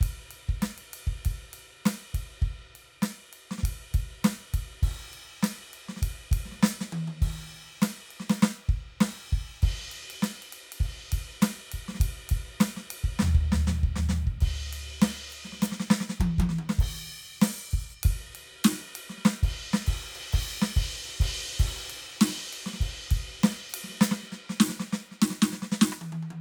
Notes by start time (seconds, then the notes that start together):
0.01 kick, ride
0.31 ride
0.49 kick
0.62 snare, ride
0.78 ride
0.94 ride
1.07 kick
1.25 kick, ride
1.54 ride
1.86 snare, ride
2.14 kick, ride
2.42 kick
2.76 ride
3.02 snare, ride
3.33 ride
3.51 snare
3.58 snare
3.64 kick, ride
3.94 kick, ride
4.25 snare, ride
4.54 kick, ride
4.83 kick, crash
5.13 ride
5.43 snare, ride
5.74 ride
5.89 snare
5.97 snare
6.02 kick, ride
6.32 kick, ride
6.46 snare
6.52 snare
6.58 snare
6.63 snare, hi-hat pedal
6.81 snare
6.93 high tom
7.08 high tom
7.22 kick, crash
7.54 ride
7.82 snare, ride
8.11 ride
8.20 snare
8.30 snare
8.43 snare
8.69 kick
9.01 snare, crash
9.33 kick
9.63 kick, ride
9.92 ride
10.10 ride
10.23 snare, ride
10.43 ride
10.53 ride
10.72 ride
10.80 kick, ride
11.12 kick, ride
11.42 snare, hi-hat pedal, ride
11.72 kick, ride
11.88 snare
11.95 snare
12.00 kick, ride
12.29 kick, ride
12.61 snare, hi-hat pedal, ride
12.77 snare
12.88 hi-hat pedal, ride
13.04 kick
13.19 snare, floor tom
13.35 kick
13.52 snare, floor tom
13.67 snare, floor tom
13.83 kick
13.96 snare, floor tom
14.09 snare, floor tom
14.27 kick
14.41 kick, ride
14.73 ride
15.02 snare, hi-hat pedal, ride
15.30 hi-hat pedal, ride
15.45 snare
15.53 snare
15.59 snare
15.62 snare, hi-hat pedal
15.72 snare
15.80 snare
15.91 snare
16.01 snare
16.10 snare
16.20 kick, high tom
16.39 kick, high tom
16.49 snare
16.59 high tom
16.70 snare
16.79 kick, crash
17.42 open hi-hat, snare
17.73 kick
18.04 kick, ride
18.35 ride
18.65 snare, ride
18.96 ride
19.10 snare
19.18 snare
19.25 snare
19.43 kick, ride
19.74 snare
19.87 kick, crash
20.15 ride
20.33 kick, crash
20.62 snare
20.76 kick, ride
21.04 crash
21.20 kick, ride
21.60 kick, crash
21.66 closed hi-hat
21.90 ride
22.21 snare, ride
22.48 hi-hat pedal
22.53 ride
22.66 snare
22.74 snare
22.81 kick, ride
23.11 kick, ride
23.40 snare, hi-hat pedal, ride
23.70 hi-hat pedal
23.74 ride
23.84 snare
23.90 snare
23.95 snare
24.01 snare, hi-hat pedal
24.12 snare
24.23 snare
24.32 snare
24.50 snare
24.60 snare, hi-hat pedal
24.70 snare
24.80 snare
24.93 snare
25.12 snare
25.22 snare
25.31 snare
25.42 snare
25.53 snare
25.62 snare
25.72 snare
25.82 snare
25.92 cross-stick
26.02 high tom
26.13 high tom
26.23 high tom
26.31 high tom